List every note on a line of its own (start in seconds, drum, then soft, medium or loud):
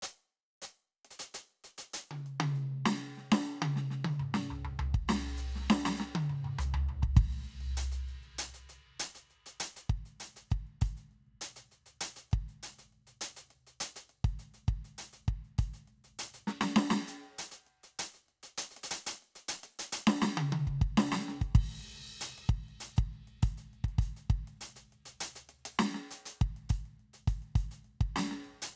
0.02 hi-hat pedal loud
0.62 hi-hat pedal medium
1.05 closed hi-hat soft
1.11 closed hi-hat soft
1.19 closed hi-hat medium
1.34 closed hi-hat medium
1.51 closed hi-hat soft
1.64 closed hi-hat soft
1.78 closed hi-hat medium
1.94 closed hi-hat medium
2.11 high tom medium
2.26 closed hi-hat soft
2.40 high tom loud
2.55 closed hi-hat soft
2.86 snare loud
3.17 snare soft
3.21 snare soft
3.32 snare loud
3.45 snare soft
3.48 snare soft
3.50 snare soft
3.54 snare soft
3.62 high tom loud
3.76 snare medium
3.91 snare soft
4.04 high tom loud
4.20 mid tom medium
4.34 snare loud
4.50 floor tom medium
4.65 floor tom medium
4.79 floor tom loud
4.94 kick medium
5.08 snare loud
5.08 crash medium
5.27 snare soft
5.37 hi-hat pedal medium
5.55 snare soft
5.60 snare soft
5.63 snare soft
5.67 snare soft
5.70 snare loud
5.85 snare loud
5.97 snare medium
5.97 hi-hat pedal medium
6.15 high tom loud
6.29 mid tom medium
6.44 mid tom medium
6.59 floor tom loud
6.59 hi-hat pedal loud
6.74 floor tom loud
6.89 floor tom medium
7.02 kick medium
7.02 floor tom medium
7.15 kick loud
7.15 hi-hat pedal soft
7.15 crash medium
7.33 closed hi-hat soft
7.44 closed hi-hat soft
7.60 closed hi-hat soft
7.77 closed hi-hat loud
7.92 closed hi-hat soft
8.08 closed hi-hat soft
8.22 closed hi-hat soft
8.38 closed hi-hat loud
8.54 closed hi-hat soft
8.69 closed hi-hat soft
9.00 closed hi-hat loud
9.15 closed hi-hat medium
9.30 closed hi-hat soft
9.46 closed hi-hat medium
9.60 closed hi-hat loud
9.76 closed hi-hat soft
9.89 kick medium
9.89 closed hi-hat soft
9.97 kick soft
10.05 closed hi-hat soft
10.20 closed hi-hat loud
10.36 closed hi-hat medium
10.51 closed hi-hat soft
10.51 kick medium
10.67 closed hi-hat soft
10.81 closed hi-hat loud
10.81 kick medium
10.97 closed hi-hat soft
11.11 closed hi-hat soft
11.27 closed hi-hat soft
11.41 closed hi-hat loud
11.56 closed hi-hat medium
11.71 closed hi-hat soft
11.86 closed hi-hat soft
12.01 closed hi-hat loud
12.16 closed hi-hat medium
12.31 kick medium
12.31 closed hi-hat soft
12.48 closed hi-hat soft
12.63 closed hi-hat loud
12.79 closed hi-hat soft
12.92 closed hi-hat soft
13.07 closed hi-hat soft
13.21 closed hi-hat loud
13.36 closed hi-hat soft
13.50 closed hi-hat soft
13.67 closed hi-hat soft
13.80 closed hi-hat loud
13.96 closed hi-hat medium
14.09 closed hi-hat soft
14.24 closed hi-hat soft
14.24 kick medium
14.39 closed hi-hat medium
14.54 closed hi-hat soft
14.68 kick medium
14.68 closed hi-hat soft
14.84 closed hi-hat soft
14.98 closed hi-hat loud
15.13 closed hi-hat soft
15.28 kick medium
15.28 closed hi-hat soft
15.44 closed hi-hat soft
15.58 closed hi-hat loud
15.58 kick medium
15.74 closed hi-hat medium
15.88 closed hi-hat soft
16.04 closed hi-hat soft
16.19 closed hi-hat loud
16.34 closed hi-hat soft
16.47 snare medium
16.61 snare loud
16.76 snare loud
16.90 snare loud
17.07 closed hi-hat loud
17.23 closed hi-hat soft
17.38 closed hi-hat loud
17.51 closed hi-hat medium
17.66 closed hi-hat soft
17.83 closed hi-hat soft
17.99 closed hi-hat loud
18.14 closed hi-hat soft
18.28 closed hi-hat soft
18.43 closed hi-hat medium
18.58 closed hi-hat loud
18.71 closed hi-hat soft
18.77 closed hi-hat soft
18.83 closed hi-hat medium
18.91 closed hi-hat loud
19.07 closed hi-hat loud
19.22 closed hi-hat soft
19.35 closed hi-hat soft
19.48 closed hi-hat loud
19.63 closed hi-hat medium
19.79 closed hi-hat loud
19.92 closed hi-hat loud
20.07 snare loud
20.22 snare loud
20.37 high tom loud
20.52 high tom loud
20.67 kick soft
20.81 kick medium
20.97 snare loud
21.12 snare loud
21.28 snare soft
21.41 kick soft
21.41 closed hi-hat medium
21.55 kick loud
21.55 crash loud
21.72 closed hi-hat soft
21.83 closed hi-hat soft
22.05 closed hi-hat soft
22.21 closed hi-hat loud
22.38 closed hi-hat soft
22.49 kick medium
22.49 closed hi-hat soft
22.68 closed hi-hat soft
22.80 closed hi-hat loud
22.96 closed hi-hat soft
22.96 kick medium
23.13 closed hi-hat soft
23.27 closed hi-hat soft
23.43 closed hi-hat loud
23.43 kick medium
23.57 closed hi-hat medium
23.73 closed hi-hat soft
23.84 kick soft
23.88 closed hi-hat soft
23.98 closed hi-hat loud
23.98 kick medium
24.16 closed hi-hat medium
24.30 kick medium
24.30 closed hi-hat soft
24.47 closed hi-hat soft
24.61 closed hi-hat loud
24.76 closed hi-hat medium
24.92 closed hi-hat soft
25.05 closed hi-hat medium
25.20 closed hi-hat loud
25.35 closed hi-hat medium
25.49 closed hi-hat soft
25.65 closed hi-hat medium
25.79 snare loud
25.94 snare medium
26.11 closed hi-hat loud
26.25 closed hi-hat loud
26.41 kick medium
26.41 closed hi-hat soft
26.56 closed hi-hat soft
26.69 closed hi-hat loud
26.69 kick medium
26.85 closed hi-hat soft
26.99 closed hi-hat soft
27.13 closed hi-hat medium
27.28 kick medium
27.28 closed hi-hat loud
27.42 closed hi-hat soft
27.55 closed hi-hat loud
27.55 kick medium
27.71 closed hi-hat medium
27.84 closed hi-hat soft
28.01 kick medium
28.01 closed hi-hat soft
28.16 closed hi-hat loud
28.16 snare loud
28.31 snare soft
28.44 closed hi-hat soft
28.62 closed hi-hat loud